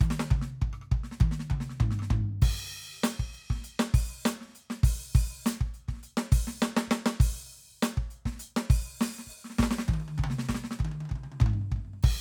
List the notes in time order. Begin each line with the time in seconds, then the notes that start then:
0.01 kick, hi-hat pedal, high tom
0.11 snare
0.20 snare
0.31 kick, mid tom
0.42 snare
0.62 kick, floor tom
0.73 cross-stick
0.82 cross-stick
0.92 kick, mid tom
1.04 snare
1.12 snare
1.21 kick, high tom
1.32 snare
1.40 snare
1.50 kick, mid tom
1.61 snare
1.70 snare
1.75 snare
1.80 kick, floor tom
1.91 snare
1.99 cross-stick, snare
2.11 kick, floor tom
2.42 kick, hi-hat pedal, crash
3.04 closed hi-hat, snare
3.20 kick
3.34 closed hi-hat
3.50 kick, snare
3.55 snare
3.58 snare
3.61 closed hi-hat, snare
3.80 snare
3.94 open hi-hat, kick
4.26 open hi-hat, snare, hi-hat pedal
4.41 snare
4.46 snare
4.49 snare
4.51 snare
4.55 closed hi-hat
4.70 snare
4.84 open hi-hat, kick
5.15 open hi-hat, kick
5.45 closed hi-hat, snare, hi-hat pedal
5.61 kick
5.66 snare
5.74 closed hi-hat
5.88 kick, snare
5.93 snare
5.97 snare
6.03 closed hi-hat
6.17 snare
6.32 open hi-hat, kick
6.48 snare
6.60 snare, hi-hat pedal
6.77 snare
6.88 kick, snare
7.06 snare
7.20 open hi-hat, kick
7.72 kick
7.83 open hi-hat, snare, hi-hat pedal
7.98 kick
8.11 closed hi-hat
8.26 kick, snare
8.31 snare
8.36 snare
8.40 closed hi-hat
8.57 snare
8.70 open hi-hat, kick, snare
9.01 open hi-hat, snare
9.19 snare
9.27 open hi-hat, kick
9.45 snare
9.50 snare
9.53 snare
9.59 kick, snare
9.63 snare
9.71 snare
9.79 snare
9.88 kick, high tom
9.94 high tom
10.00 high tom
10.08 high tom
10.13 high tom
10.18 kick, mid tom
10.24 mid tom
10.30 snare
10.39 snare
10.43 snare
10.49 kick, snare
10.55 snare
10.64 snare
10.71 snare
10.79 kick, high tom
10.85 high tom
10.89 high tom
10.92 high tom
11.01 high tom
11.06 mid tom, high tom
11.12 kick
11.16 mid tom
11.20 mid tom
11.24 mid tom
11.32 mid tom
11.40 kick, floor tom
11.46 floor tom
11.50 floor tom
11.54 floor tom
11.62 floor tom
11.72 kick, floor tom
11.76 floor tom
11.85 floor tom
11.94 floor tom
12.01 kick, crash
12.04 kick